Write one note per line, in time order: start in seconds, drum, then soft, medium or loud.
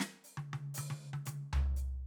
0.00 snare medium
0.24 hi-hat pedal soft
0.37 high tom medium
0.53 high tom medium
0.74 hi-hat pedal medium
0.74 high tom medium
0.90 high tom medium
1.13 high tom medium
1.26 hi-hat pedal medium
1.26 high tom medium
1.53 floor tom loud
1.77 hi-hat pedal soft